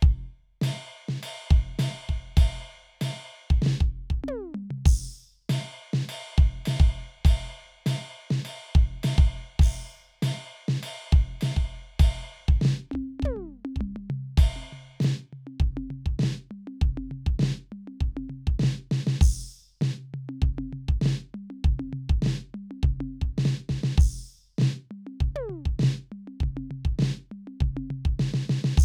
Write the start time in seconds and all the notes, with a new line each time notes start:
0.01 kick, ride
0.05 snare
0.62 snare, ride bell
1.09 snare
1.23 ride bell
1.51 kick
1.79 snare, ride bell
2.10 kick
2.38 kick, ride bell
3.02 snare, ride bell
3.51 kick
3.63 snare
3.67 snare
3.81 kick
4.11 kick
4.24 high tom
4.28 high tom
4.55 mid tom
4.71 floor tom
4.79 floor tom
4.86 kick, crash
5.50 snare, ride bell
5.94 snare
6.09 ride bell
6.38 kick
6.66 snare, ride bell
6.80 kick
7.25 kick, ride bell
7.87 snare, ride bell
8.31 snare
8.46 ride bell
8.76 kick
9.04 snare, ride bell
9.19 kick
9.60 kick, ride bell, crash
10.23 snare, ride bell
10.69 snare
10.83 ride bell
11.13 kick
11.42 snare, ride bell
11.57 kick
12.00 kick, ride bell
12.49 kick
12.61 kick, snare
12.66 snare
12.92 kick, high tom
12.96 high tom
13.20 kick, high tom
13.25 high tom
13.37 mid tom
13.66 high tom
13.77 kick
13.81 mid tom
13.97 mid tom
14.11 floor tom
14.38 kick, ride
14.57 high tom
14.73 floor tom
15.01 snare, hi-hat pedal
15.05 snare
15.33 floor tom
15.47 high tom
15.60 kick, floor tom
15.78 high tom
15.91 floor tom
16.06 kick
16.20 snare
16.24 snare
16.52 mid tom
16.68 high tom
16.82 kick, floor tom
16.98 high tom
17.12 floor tom
17.27 kick
17.40 snare
17.43 snare
17.73 mid tom
17.88 high tom
18.01 kick, floor tom
18.17 high tom
18.30 floor tom
18.48 kick
18.60 snare
18.64 snare
18.92 snare
19.07 snare
19.22 kick, crash
19.82 snare, floor tom
20.14 floor tom
20.30 high tom
20.42 kick, floor tom
20.59 high tom
20.73 floor tom
20.89 kick
21.02 snare
21.06 snare
21.35 mid tom
21.51 high tom
21.65 kick, floor tom
21.80 high tom
21.93 floor tom
22.10 kick
22.23 snare
22.27 snare
22.55 mid tom
22.71 high tom
22.84 kick, floor tom
23.01 high tom
23.22 kick
23.39 snare
23.46 snare
23.70 kick, snare
23.84 snare
23.98 kick, snare, crash
24.59 snare, hi-hat pedal
24.62 snare
24.91 mid tom
25.07 high tom
25.21 kick, floor tom
25.36 high tom
25.50 floor tom
25.66 kick
25.80 snare
25.84 snare
26.12 mid tom
26.28 high tom
26.41 kick, floor tom
26.57 high tom
26.71 floor tom
26.86 kick
27.00 snare
27.03 snare
27.32 mid tom
27.48 high tom
27.61 kick, floor tom
27.77 high tom
27.91 floor tom
28.06 kick
28.20 snare
28.34 snare
28.50 snare
28.65 snare
28.78 kick, crash